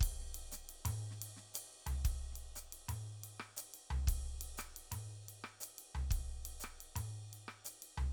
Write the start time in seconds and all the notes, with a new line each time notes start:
0.01 kick, ride
0.21 snare
0.35 ride
0.52 snare, hi-hat pedal
0.69 ride
0.85 mid tom, ride
1.11 snare
1.22 ride
1.37 snare
1.54 hi-hat pedal, ride
1.87 floor tom, ride
2.05 kick, ride
2.32 snare
2.36 ride
2.56 cross-stick, snare, hi-hat pedal
2.73 ride
2.89 mid tom, ride
3.24 ride
3.40 cross-stick
3.57 hi-hat pedal, ride
3.74 ride
3.91 floor tom
4.08 kick, ride
4.41 ride
4.58 cross-stick, hi-hat pedal
4.77 ride
4.92 mid tom, ride
5.29 ride
5.44 cross-stick
5.61 hi-hat pedal, ride
5.79 ride
5.95 floor tom
6.11 kick, ride
6.46 ride
6.60 hi-hat pedal
6.64 cross-stick
6.81 ride
6.96 mid tom, ride
7.33 ride
7.49 cross-stick
7.65 hi-hat pedal, ride
7.83 ride
7.98 floor tom